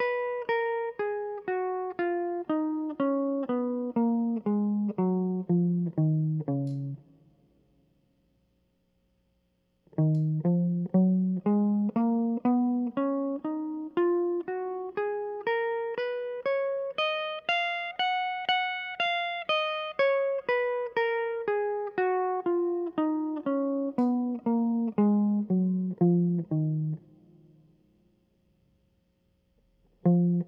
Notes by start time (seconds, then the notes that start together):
0.00 B4
0.49 A#4
1.00 G#4
1.48 F#4
1.99 F4
2.50 D#4
3.00 C#4
3.50 B3
3.97 A#3
4.47 G#3
4.99 F#3
5.50 F3
5.99 D#3
6.49 C#3
9.99 D#3
10.46 F3
10.95 F#3
11.47 G#3
11.96 A#3
12.46 B3
12.97 C#4
13.45 D#4
13.97 F4
14.48 F#4
14.97 G#4
15.47 A#4
15.98 B4
16.46 C#5
16.98 D#5
17.49 F5
18.00 F#5
18.49 F#5
19.00 F5
19.49 D#5
19.99 C#5
20.49 B4
20.97 A#4
21.48 G#4
21.98 F#4
22.46 F4
22.98 D#4
23.47 C#4
23.99 B3
24.47 A#3
24.99 G#3
25.51 F#3
26.02 F3
26.52 D#3
30.06 F3